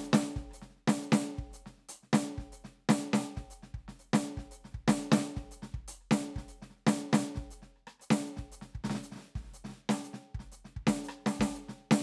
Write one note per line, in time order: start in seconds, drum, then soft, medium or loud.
0.01 snare soft
0.01 hi-hat pedal medium
0.14 snare loud
0.19 cross-stick medium
0.37 kick soft
0.37 snare soft
0.49 snare soft
0.51 cross-stick soft
0.51 snare soft
0.51 hi-hat pedal medium
0.62 snare soft
0.71 snare soft
0.77 snare soft
0.88 snare loud
1.01 snare soft
1.01 hi-hat pedal medium
1.13 snare loud
1.18 cross-stick soft
1.37 kick soft
1.37 snare soft
1.41 snare soft
1.54 hi-hat pedal medium
1.67 snare soft
1.77 snare soft
1.90 closed hi-hat loud
2.04 snare soft
2.14 snare loud
2.19 cross-stick medium
2.28 cross-stick soft
2.39 kick soft
2.39 snare soft
2.53 snare soft
2.53 hi-hat pedal medium
2.65 snare soft
2.77 snare soft
2.90 snare loud
3.01 cross-stick soft
3.01 hi-hat pedal medium
3.13 snare soft
3.13 snare loud
3.19 snare soft
3.37 kick soft
3.37 snare soft
3.48 snare soft
3.48 hi-hat pedal medium
3.52 snare soft
3.63 snare soft
3.75 kick soft
3.75 snare soft
3.78 snare soft
3.89 snare soft
3.96 snare soft
3.96 hi-hat pedal medium
4.01 snare soft
4.14 snare loud
4.38 kick soft
4.38 snare soft
4.46 snare soft
4.51 snare soft
4.51 hi-hat pedal medium
4.53 snare soft
4.53 closed hi-hat soft
4.65 snare soft
4.72 kick soft
4.72 snare soft
4.78 snare soft
4.89 snare loud
5.01 snare soft
5.01 hi-hat pedal medium
5.13 snare loud
5.18 snare medium
5.37 kick soft
5.37 snare soft
5.48 snare soft
5.52 snare soft
5.52 hi-hat pedal medium
5.63 snare soft
5.75 kick soft
5.75 cross-stick soft
5.75 snare soft
5.89 closed hi-hat loud
6.02 cross-stick soft
6.12 snare loud
6.17 cross-stick soft
6.23 cross-stick soft
6.37 kick soft
6.37 snare soft
6.49 snare soft
6.49 hi-hat pedal medium
6.63 snare soft
6.71 snare soft
6.77 snare soft
6.88 snare loud
6.93 snare soft
6.99 snare soft
6.99 hi-hat pedal medium
7.14 snare loud
7.19 snare soft
7.36 kick soft
7.36 snare soft
7.51 snare soft
7.51 hi-hat pedal medium
7.63 snare soft
7.77 cross-stick soft
7.88 cross-stick medium
8.00 cross-stick soft
8.00 snare soft
8.00 hi-hat pedal medium
8.11 snare loud
8.24 snare soft
8.24 hi-hat pedal medium
8.37 kick soft
8.37 snare soft
8.51 snare soft
8.51 hi-hat pedal medium
8.62 snare soft
8.73 kick soft
8.73 cross-stick soft
8.73 snare soft
8.85 snare medium
8.91 snare medium
8.95 snare medium
9.01 cross-stick soft
9.01 hi-hat pedal medium
9.12 snare soft
9.16 snare soft
9.18 snare soft
9.21 snare soft
9.24 snare soft
9.24 hi-hat pedal soft
9.36 kick soft
9.36 snare soft
9.41 snare soft
9.44 snare soft
9.47 snare soft
9.53 snare soft
9.53 hi-hat pedal medium
9.53 crash soft
9.65 snare soft
9.69 snare soft
9.73 snare soft
9.90 cross-stick medium
9.90 snare loud
10.01 snare soft
10.02 snare soft
10.02 hi-hat pedal medium
10.14 snare soft
10.29 snare soft
10.35 kick soft
10.40 snare soft
10.53 snare soft
10.53 hi-hat pedal medium
10.65 snare soft
10.77 kick soft
10.77 cross-stick soft
10.88 snare loud
10.98 snare soft
11.01 snare soft
11.01 hi-hat pedal medium
11.09 cross-stick medium
11.19 cross-stick soft
11.27 snare medium
11.40 kick soft
11.40 snare loud
11.55 cross-stick soft
11.55 hi-hat pedal medium
11.69 snare soft
11.81 snare soft
11.92 snare loud